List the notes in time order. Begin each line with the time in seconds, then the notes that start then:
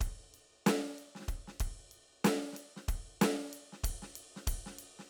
0.01 kick, ride
0.34 ride
0.67 snare, ride
0.99 ride
1.15 snare
1.20 snare
1.22 snare
1.29 kick, ride
1.48 snare
1.60 kick, ride
1.92 ride
2.25 snare, ride
2.53 snare, ride
2.77 snare
2.89 kick, ride
3.22 snare, ride
3.53 ride
3.73 snare
3.84 kick, ride
4.03 snare
4.16 ride
4.37 snare
4.47 kick, ride
4.66 snare
4.70 snare
4.79 ride
4.99 snare